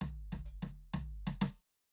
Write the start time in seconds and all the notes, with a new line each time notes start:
0.01 snare, floor tom
0.32 snare, floor tom
0.46 hi-hat pedal
0.62 snare, floor tom
0.94 snare, floor tom
1.27 snare
1.42 snare